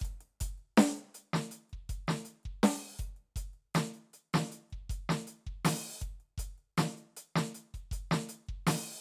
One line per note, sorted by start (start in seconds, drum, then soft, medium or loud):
0.01 kick medium
0.01 hi-hat pedal soft
0.05 closed hi-hat medium
0.21 closed hi-hat soft
0.41 closed hi-hat loud
0.41 kick medium
0.58 closed hi-hat soft
0.78 closed hi-hat medium
0.78 snare loud
0.95 closed hi-hat soft
1.15 closed hi-hat medium
1.34 snare loud
1.34 closed hi-hat soft
1.52 closed hi-hat medium
1.70 kick soft
1.70 closed hi-hat soft
1.90 closed hi-hat medium
1.90 kick medium
2.08 snare loud
2.08 closed hi-hat soft
2.26 closed hi-hat medium
2.44 kick soft
2.44 closed hi-hat soft
2.64 open hi-hat loud
2.64 snare loud
2.99 kick medium
2.99 hi-hat pedal soft
2.99 open hi-hat medium
3.17 closed hi-hat soft
3.37 closed hi-hat medium
3.37 kick medium
3.54 closed hi-hat soft
3.75 closed hi-hat medium
3.75 snare loud
3.94 closed hi-hat soft
4.14 closed hi-hat medium
4.34 closed hi-hat soft
4.34 snare loud
4.52 closed hi-hat medium
4.52 cross-stick soft
4.71 kick soft
4.71 closed hi-hat soft
4.90 closed hi-hat medium
4.90 kick medium
5.10 closed hi-hat soft
5.10 snare loud
5.28 closed hi-hat medium
5.47 kick soft
5.47 closed hi-hat soft
5.65 open hi-hat loud
5.65 snare loud
6.01 kick medium
6.01 closed hi-hat medium
6.01 hi-hat pedal medium
6.21 closed hi-hat soft
6.38 closed hi-hat medium
6.38 kick medium
6.59 closed hi-hat soft
6.78 closed hi-hat medium
6.78 snare loud
6.98 closed hi-hat soft
7.17 closed hi-hat medium
7.36 closed hi-hat soft
7.36 snare loud
7.55 closed hi-hat medium
7.75 closed hi-hat soft
7.75 kick soft
7.92 closed hi-hat medium
7.92 kick medium
8.12 snare loud
8.12 closed hi-hat soft
8.30 closed hi-hat medium
8.47 kick soft
8.47 closed hi-hat soft
8.68 open hi-hat loud
8.68 snare loud